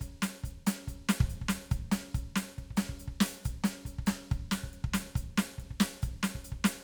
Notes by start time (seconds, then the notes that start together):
0.01 closed hi-hat, kick
0.22 closed hi-hat, snare
0.43 closed hi-hat, kick, snare
0.67 closed hi-hat, snare
0.87 closed hi-hat, kick, snare
1.09 closed hi-hat, snare
1.20 kick, snare
1.30 closed hi-hat
1.42 kick
1.49 closed hi-hat, snare
1.68 closed hi-hat, kick, snare
1.92 closed hi-hat, snare
2.11 closed hi-hat, kick, snare
2.36 closed hi-hat, snare
2.55 kick, snare, closed hi-hat
2.70 kick
2.77 closed hi-hat, snare
2.89 kick, snare
3.00 closed hi-hat
3.08 kick
3.20 open hi-hat, snare
3.42 closed hi-hat, snare, hi-hat pedal
3.46 kick
3.64 closed hi-hat, snare
3.83 closed hi-hat, kick, snare
3.99 kick
4.07 closed hi-hat, snare
4.26 snare
4.31 closed hi-hat, kick
4.51 closed hi-hat, snare
4.64 kick, snare
4.73 closed hi-hat
4.84 kick
4.94 closed hi-hat, snare
5.13 closed hi-hat, kick, snare
5.38 closed hi-hat, snare
5.58 kick, closed hi-hat
5.71 kick
5.80 closed hi-hat, snare
6.00 closed hi-hat, kick, snare
6.23 closed hi-hat, snare
6.35 kick
6.44 closed hi-hat
6.52 kick
6.64 closed hi-hat, snare